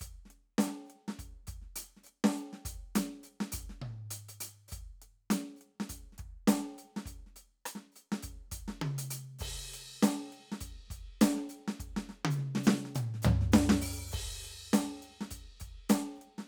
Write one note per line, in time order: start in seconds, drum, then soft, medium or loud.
0.01 closed hi-hat medium
0.01 kick soft
0.25 snare soft
0.30 closed hi-hat soft
0.58 closed hi-hat loud
0.58 snare medium
0.64 snare soft
0.64 closed hi-hat medium
0.86 hi-hat pedal soft
0.90 closed hi-hat soft
1.08 snare medium
1.19 closed hi-hat medium
1.19 kick soft
1.47 closed hi-hat medium
1.47 kick soft
1.47 snare soft
1.56 kick soft
1.62 snare soft
1.64 snare soft
1.76 closed hi-hat loud
1.97 snare soft
2.04 closed hi-hat soft
2.04 hi-hat pedal soft
2.24 snare loud
2.37 closed hi-hat soft
2.53 snare soft
2.65 closed hi-hat loud
2.65 kick soft
2.71 kick soft
2.74 kick soft
2.95 closed hi-hat loud
2.95 snare loud
3.23 closed hi-hat soft
3.23 hi-hat pedal medium
3.40 snare medium
3.52 closed hi-hat loud
3.52 kick soft
3.60 kick soft
3.63 kick soft
3.69 snare soft
3.82 mid tom medium
4.11 closed hi-hat loud
4.29 closed hi-hat medium
4.41 closed hi-hat loud
4.68 closed hi-hat medium
4.68 hi-hat pedal medium
4.72 kick soft
4.78 kick soft
5.02 closed hi-hat medium
5.30 closed hi-hat loud
5.30 snare loud
5.56 hi-hat pedal soft
5.61 closed hi-hat soft
5.80 snare medium
5.89 closed hi-hat medium
5.89 kick soft
6.12 snare soft
6.18 kick soft
6.18 closed hi-hat medium
6.48 closed hi-hat loud
6.48 snare loud
6.59 snare soft
6.78 closed hi-hat medium
6.96 snare medium
7.06 closed hi-hat medium
7.06 kick soft
7.26 snare soft
7.36 closed hi-hat medium
7.36 snare soft
7.66 closed hi-hat loud
7.66 cross-stick medium
7.75 snare soft
7.92 closed hi-hat soft
7.92 hi-hat pedal soft
8.12 snare medium
8.23 closed hi-hat medium
8.23 kick soft
8.52 closed hi-hat loud
8.52 kick soft
8.61 kick soft
8.68 snare medium
8.82 high tom loud
8.98 closed hi-hat loud
9.11 open hi-hat loud
9.39 kick medium
9.39 hi-hat pedal medium
9.39 crash loud
9.47 kick soft
9.50 kick soft
9.74 closed hi-hat medium
10.03 closed hi-hat loud
10.03 snare loud
10.32 closed hi-hat soft
10.52 snare medium
10.61 closed hi-hat medium
10.61 kick soft
10.67 kick soft
10.88 closed hi-hat medium
10.88 kick soft
10.88 snare soft
10.96 kick soft
10.99 kick soft
11.21 closed hi-hat loud
11.21 snare loud
11.36 snare soft
11.49 closed hi-hat soft
11.49 hi-hat pedal medium
11.68 snare medium
11.80 kick soft
11.80 closed hi-hat medium
11.86 kick soft
11.97 snare medium
12.09 snare soft
12.25 high tom loud
12.31 hi-hat pedal medium
12.38 snare soft
12.55 snare medium
12.64 snare loud
12.64 hi-hat pedal medium
12.85 snare soft
12.95 hi-hat pedal loud
12.95 mid tom loud
13.14 snare soft
13.22 hi-hat pedal loud
13.22 floor tom loud
13.41 snare soft
13.52 kick soft
13.52 snare loud
13.52 hi-hat pedal loud
13.69 snare loud
13.81 open hi-hat loud
14.11 kick medium
14.11 hi-hat pedal medium
14.11 crash loud
14.21 kick soft
14.44 closed hi-hat soft
14.73 closed hi-hat loud
14.73 snare loud
15.02 closed hi-hat medium
15.21 snare medium
15.31 closed hi-hat medium
15.31 kick soft
15.60 closed hi-hat medium
15.60 kick soft
15.89 closed hi-hat loud
15.89 snare loud
16.15 kick soft
16.15 hi-hat pedal soft
16.21 closed hi-hat soft
16.38 snare soft